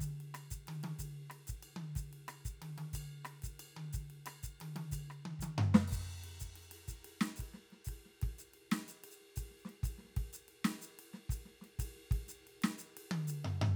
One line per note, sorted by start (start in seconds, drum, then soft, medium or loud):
0.01 kick soft
0.01 hi-hat pedal medium
0.01 ride soft
0.21 ride soft
0.35 cross-stick medium
0.35 ride bell medium
0.51 kick soft
0.51 hi-hat pedal medium
0.68 high tom medium
0.68 ride soft
0.73 hi-hat pedal soft
0.84 high tom medium
0.84 ride soft
1.00 kick soft
1.00 hi-hat pedal medium
1.00 ride medium
1.31 cross-stick medium
1.31 ride soft
1.48 kick soft
1.48 hi-hat pedal medium
1.48 ride soft
1.64 ride bell medium
1.77 high tom medium
1.96 kick soft
1.96 hi-hat pedal medium
1.96 ride soft
2.14 ride soft
2.29 cross-stick medium
2.29 ride bell medium
2.46 kick soft
2.46 hi-hat pedal medium
2.63 high tom medium
2.63 ride soft
2.79 high tom medium
2.79 ride soft
2.94 kick soft
2.94 hi-hat pedal medium
2.94 ride bell medium
3.26 cross-stick medium
3.26 ride soft
3.43 kick soft
3.43 hi-hat pedal medium
3.43 ride soft
3.60 ride bell medium
3.66 hi-hat pedal soft
3.77 high tom medium
3.94 kick soft
3.94 hi-hat pedal medium
3.94 ride soft
4.11 ride soft
4.27 cross-stick medium
4.27 ride bell medium
4.44 kick soft
4.44 hi-hat pedal medium
4.61 high tom medium
4.61 ride medium
4.77 high tom medium
4.77 ride soft
4.92 kick soft
4.92 hi-hat pedal medium
4.92 ride bell medium
5.11 cross-stick soft
5.26 high tom medium
5.40 kick soft
5.40 hi-hat pedal medium
5.40 high tom medium
5.59 floor tom loud
5.75 snare loud
5.89 crash medium
5.93 kick soft
5.93 hi-hat pedal medium
6.25 ride soft
6.40 kick soft
6.40 hi-hat pedal medium
6.57 ride soft
6.63 hi-hat pedal soft
6.72 ride medium
6.89 kick soft
6.89 hi-hat pedal medium
7.05 ride medium
7.22 snare loud
7.37 kick soft
7.37 hi-hat pedal medium
7.41 ride medium
7.55 snare soft
7.71 snare soft
7.71 ride soft
7.85 kick soft
7.85 hi-hat pedal medium
7.90 ride medium
8.06 snare soft
8.23 kick medium
8.23 ride medium
8.39 hi-hat pedal medium
8.55 ride soft
8.72 snare loud
8.72 ride medium
8.89 hi-hat pedal medium
9.05 ride medium
9.12 hi-hat pedal soft
9.22 snare soft
9.37 kick soft
9.37 hi-hat pedal medium
9.37 ride medium
9.51 snare soft
9.59 hi-hat pedal soft
9.66 snare soft
9.70 ride soft
9.84 kick medium
9.84 hi-hat pedal medium
9.84 ride medium
9.99 snare soft
10.05 snare soft
10.11 snare soft
10.17 kick medium
10.17 ride medium
10.34 hi-hat pedal medium
10.49 ride soft
10.65 snare loud
10.65 ride medium
10.82 hi-hat pedal medium
11.00 ride medium
11.14 snare soft
11.30 kick medium
11.30 hi-hat pedal medium
11.30 ride medium
11.46 snare soft
11.62 snare soft
11.62 ride soft
11.80 kick soft
11.80 hi-hat pedal medium
11.80 ride medium
11.97 snare soft
12.12 kick medium
12.12 ride medium
12.28 snare soft
12.28 hi-hat pedal medium
12.48 ride soft
12.63 snare loud
12.63 ride medium
12.79 hi-hat pedal medium
12.98 ride medium
13.12 high tom loud
13.28 hi-hat pedal medium
13.28 ride medium
13.45 floor tom medium
13.62 floor tom loud